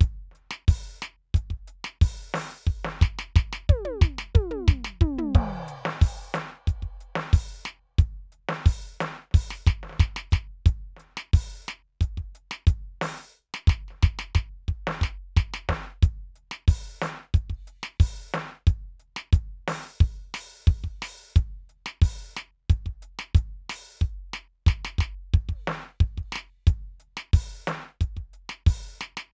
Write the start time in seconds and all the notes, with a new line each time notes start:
0.01 closed hi-hat, kick
0.32 closed hi-hat, snare
0.51 snare
0.68 open hi-hat, kick
1.00 closed hi-hat, snare, hi-hat pedal
1.34 closed hi-hat, kick
1.50 kick
1.68 closed hi-hat
1.84 snare
2.02 open hi-hat, kick
2.34 open hi-hat, snare
2.67 kick
2.85 snare
3.02 kick, snare
3.19 snare
3.36 kick, snare
3.53 snare
3.69 kick, high tom
3.85 high tom
4.02 kick, snare
4.19 snare
4.34 kick, mid tom
4.51 mid tom
4.68 kick, snare
4.85 snare
5.01 kick, floor tom
5.18 floor tom
5.33 kick, hi-hat pedal, crash
5.35 kick
5.65 closed hi-hat, hi-hat pedal
5.85 snare
6.02 open hi-hat, kick
6.34 closed hi-hat, snare, hi-hat pedal
6.68 closed hi-hat, kick
6.83 kick
7.01 closed hi-hat
7.16 snare
7.33 open hi-hat, kick
7.65 snare, hi-hat pedal
7.99 closed hi-hat, kick
8.32 closed hi-hat
8.49 snare
8.66 open hi-hat, kick
8.98 closed hi-hat, snare, hi-hat pedal
9.31 open hi-hat, kick, snare
9.51 snare
9.67 kick, snare, hi-hat pedal
9.83 snare
9.90 snare
9.93 snare
9.99 kick, snare, hi-hat pedal
10.16 snare
10.31 kick, snare, hi-hat pedal
10.66 closed hi-hat, kick
10.97 closed hi-hat, snare
11.17 snare
11.34 open hi-hat, kick
11.67 closed hi-hat, snare, hi-hat pedal
12.01 closed hi-hat, kick
12.18 kick
12.35 closed hi-hat
12.51 snare
12.67 closed hi-hat, kick
13.02 open hi-hat, snare
13.33 hi-hat pedal
13.54 snare
13.68 kick, snare
13.88 snare
13.91 snare
14.03 kick, snare
14.19 snare
14.35 kick, snare
14.68 kick, snare
14.87 snare
15.02 kick, snare
15.37 kick, snare
15.54 snare
15.69 kick, snare
16.03 closed hi-hat, kick
16.36 closed hi-hat
16.51 snare
16.68 open hi-hat, kick
17.02 open hi-hat, snare, hi-hat pedal
17.34 closed hi-hat, kick
17.50 kick
17.54 crash, ride
17.67 closed hi-hat
17.83 snare
18.00 open hi-hat, kick
18.33 closed hi-hat, snare, hi-hat pedal
18.67 closed hi-hat, kick
19.00 closed hi-hat
19.17 snare
19.33 closed hi-hat, kick
19.68 open hi-hat, snare
20.01 kick
20.34 open hi-hat, snare
20.67 open hi-hat, kick
20.84 kick, snare
20.88 crash, ride
21.02 open hi-hat, snare
21.33 closed hi-hat, kick, hi-hat pedal
21.69 closed hi-hat
21.86 snare
22.02 open hi-hat, kick
22.35 closed hi-hat, snare, hi-hat pedal
22.70 closed hi-hat, kick
22.86 kick
23.02 closed hi-hat
23.19 snare
23.35 open hi-hat, kick
23.70 open hi-hat, snare
24.01 kick, hi-hat pedal
24.34 snare
24.67 kick, snare
24.85 snare
24.99 kick, snare
25.34 kick
25.49 kick, snare
25.53 crash, high tom, ride
25.68 snare
26.01 kick
26.18 kick
26.22 snare, crash, ride
26.32 snare
26.36 snare
26.67 closed hi-hat, kick
27.00 closed hi-hat
27.17 snare
27.33 open hi-hat, kick
27.67 closed hi-hat, snare, hi-hat pedal
28.01 closed hi-hat, kick
28.17 kick
28.33 closed hi-hat
28.49 snare
28.67 open hi-hat, kick
29.01 snare, hi-hat pedal
29.17 snare